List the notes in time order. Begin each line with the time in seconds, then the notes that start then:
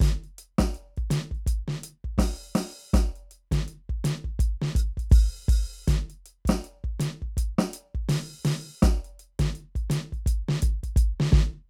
0.01 open hi-hat, kick, snare, hi-hat pedal
0.24 closed hi-hat
0.39 closed hi-hat
0.59 kick, snare, closed hi-hat
0.75 closed hi-hat
0.97 kick, closed hi-hat
1.11 closed hi-hat, snare
1.32 kick, closed hi-hat
1.47 closed hi-hat, kick
1.69 snare
1.84 closed hi-hat
2.05 kick
2.19 open hi-hat, kick, snare, hi-hat pedal
2.56 open hi-hat, kick, snare
2.94 open hi-hat, kick, snare, hi-hat pedal
3.16 closed hi-hat
3.32 closed hi-hat
3.52 kick, snare, closed hi-hat
3.69 closed hi-hat
3.90 kick
4.05 closed hi-hat, snare
4.25 kick
4.40 closed hi-hat, kick
4.62 snare
4.76 open hi-hat, kick
4.80 hi-hat pedal
4.98 kick, closed hi-hat
5.11 open hi-hat, kick, hi-hat pedal
5.49 open hi-hat, kick
5.88 open hi-hat, kick, snare, hi-hat pedal
6.11 closed hi-hat
6.26 closed hi-hat
6.46 kick, snare, closed hi-hat
6.65 closed hi-hat
6.85 kick
7.00 closed hi-hat, snare
7.23 kick
7.38 closed hi-hat, kick
7.59 snare
7.74 closed hi-hat
7.95 kick
8.10 open hi-hat, snare
8.39 kick
8.46 open hi-hat, snare
8.83 open hi-hat, kick, snare, hi-hat pedal
9.05 closed hi-hat
9.20 closed hi-hat
9.40 kick, snare, closed hi-hat
9.56 closed hi-hat
9.76 kick, closed hi-hat
9.91 closed hi-hat, snare
10.13 kick, closed hi-hat
10.27 closed hi-hat, kick
10.49 snare
10.63 closed hi-hat, kick
10.84 kick, closed hi-hat
10.97 closed hi-hat, kick, hi-hat pedal
11.21 snare
11.33 kick, snare